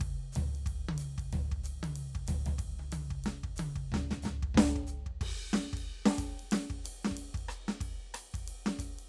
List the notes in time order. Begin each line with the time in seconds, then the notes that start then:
0.01 kick, ride
0.33 floor tom, hi-hat pedal, ride
0.55 ride
0.66 kick, ride
0.89 high tom
0.98 hi-hat pedal, ride
1.18 kick, ride
1.33 floor tom, ride
1.52 kick
1.64 hi-hat pedal, ride
1.83 high tom, ride
1.96 ride
2.15 kick
2.27 floor tom, hi-hat pedal, ride
2.46 floor tom, ride
2.59 kick, ride
2.80 high tom
2.92 hi-hat pedal, high tom, ride
3.11 kick
3.24 snare, ride
3.44 kick
3.56 hi-hat pedal, high tom, ride
3.76 kick
3.92 snare, floor tom
4.11 snare, floor tom
4.23 snare, floor tom, hi-hat pedal
4.43 kick
4.55 snare, floor tom
4.76 kick
4.87 hi-hat pedal
5.06 kick
5.21 kick, crash
5.53 snare, hi-hat pedal, ride
5.73 kick
5.77 ride
5.89 ride
6.06 snare
6.18 kick, hi-hat pedal, ride
6.40 ride
6.52 snare, ride
6.70 kick
6.85 hi-hat pedal, ride
7.05 snare
7.11 kick
7.17 ride
7.34 kick, ride
7.49 cross-stick, hi-hat pedal, ride
7.68 snare
7.81 kick, ride
8.14 cross-stick, hi-hat pedal, ride
8.34 kick, ride
8.48 ride
8.66 snare
8.79 kick, hi-hat pedal, ride
8.99 ride